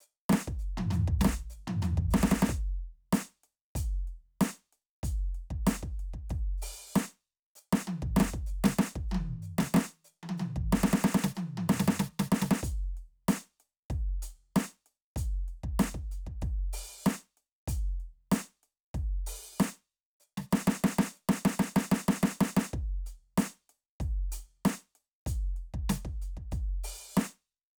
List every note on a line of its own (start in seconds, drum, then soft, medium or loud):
0.01 hi-hat pedal soft
0.30 snare loud
0.30 hi-hat pedal medium
0.33 snare loud
0.48 kick medium
0.60 hi-hat pedal soft
0.78 mid tom loud
0.78 high tom loud
0.91 hi-hat pedal medium
0.91 mid tom loud
0.91 high tom loud
1.08 kick medium
1.20 snare loud
1.20 hi-hat pedal soft
1.25 snare loud
1.51 hi-hat pedal medium
1.68 mid tom loud
1.68 high tom loud
1.83 hi-hat pedal medium
1.83 mid tom loud
1.83 high tom loud
1.98 kick medium
2.11 snare loud
2.11 hi-hat pedal medium
2.24 snare loud
2.32 snare loud
2.43 snare loud
2.50 kick medium
3.13 closed hi-hat loud
3.13 snare loud
3.44 closed hi-hat soft
3.76 closed hi-hat loud
3.76 kick medium
4.08 closed hi-hat soft
4.41 closed hi-hat loud
4.41 snare loud
4.73 closed hi-hat soft
5.04 closed hi-hat loud
5.04 kick medium
5.35 closed hi-hat soft
5.51 kick medium
5.67 closed hi-hat loud
5.67 snare loud
5.83 kick medium
6.00 closed hi-hat soft
6.14 kick soft
6.30 kick medium
6.30 closed hi-hat soft
6.58 hi-hat pedal soft
6.63 open hi-hat loud
6.96 open hi-hat loud
6.96 snare loud
6.96 hi-hat pedal medium
7.56 hi-hat pedal medium
7.73 snare loud
7.86 hi-hat pedal soft
7.86 high tom loud
8.03 kick medium
8.17 snare loud
8.17 hi-hat pedal medium
8.21 snare loud
8.34 kick medium
8.47 hi-hat pedal medium
8.65 snare loud
8.79 snare loud
8.79 hi-hat pedal soft
8.96 kick medium
9.09 hi-hat pedal soft
9.09 high tom loud
9.15 high tom loud
9.34 high tom soft
9.43 hi-hat pedal soft
9.59 snare loud
9.61 snare loud
9.75 snare loud
9.77 snare loud
10.05 hi-hat pedal medium
10.24 high tom loud
10.30 high tom loud
10.38 hi-hat pedal soft
10.38 high tom loud
10.57 kick medium
10.73 snare loud
10.84 snare loud
10.94 snare loud
11.01 snare loud
11.01 hi-hat pedal medium
11.15 snare loud
11.24 snare loud
11.36 hi-hat pedal medium
11.36 high tom loud
11.58 high tom loud
11.69 snare loud
11.69 hi-hat pedal medium
11.80 snare loud
11.88 snare loud
12.00 snare loud
12.20 snare loud
12.33 snare loud
12.33 hi-hat pedal soft
12.42 snare loud
12.51 snare loud
12.64 closed hi-hat loud
12.64 kick medium
12.98 closed hi-hat soft
13.29 closed hi-hat loud
13.29 snare loud
13.61 closed hi-hat soft
13.91 kick medium
13.91 closed hi-hat soft
14.23 open hi-hat loud
14.56 closed hi-hat medium
14.56 snare loud
14.56 hi-hat pedal medium
14.87 closed hi-hat soft
15.17 closed hi-hat loud
15.17 kick medium
15.49 closed hi-hat soft
15.64 kick medium
15.80 closed hi-hat loud
15.80 snare loud
15.95 kick medium
16.12 closed hi-hat medium
16.27 kick soft
16.42 kick medium
16.42 closed hi-hat soft
16.74 open hi-hat loud
17.06 snare loud
17.06 closed hi-hat medium
17.06 hi-hat pedal medium
17.38 closed hi-hat soft
17.68 closed hi-hat loud
17.68 kick medium
18.01 closed hi-hat soft
18.32 closed hi-hat loud
18.32 snare loud
18.64 closed hi-hat soft
18.95 kick medium
18.95 closed hi-hat soft
19.27 open hi-hat loud
19.60 open hi-hat loud
19.60 snare loud
19.60 hi-hat pedal medium
20.21 hi-hat pedal soft
20.38 snare medium
20.51 snare loud
20.51 hi-hat pedal soft
20.68 snare loud
20.83 snare loud
20.83 hi-hat pedal soft
20.99 snare loud
21.14 hi-hat pedal soft
21.29 snare loud
21.46 snare loud
21.60 snare loud
21.76 snare loud
21.76 hi-hat pedal soft
21.92 snare loud
22.07 snare loud
22.07 hi-hat pedal soft
22.24 snare loud
22.38 snare loud
22.38 hi-hat pedal soft
22.57 snare loud
22.74 kick medium
23.07 closed hi-hat medium
23.38 closed hi-hat loud
23.38 snare loud
23.70 closed hi-hat soft
24.01 kick medium
24.01 closed hi-hat soft
24.33 open hi-hat loud
24.66 closed hi-hat medium
24.66 snare loud
24.66 hi-hat pedal medium
24.96 closed hi-hat soft
25.27 closed hi-hat loud
25.27 kick medium
25.57 closed hi-hat soft
25.74 kick medium
25.90 closed hi-hat loud
25.90 snare loud
26.06 kick medium
26.22 closed hi-hat medium
26.38 kick soft
26.52 closed hi-hat medium
26.52 kick medium
26.84 open hi-hat loud
27.18 open hi-hat medium
27.18 snare loud
27.18 hi-hat pedal medium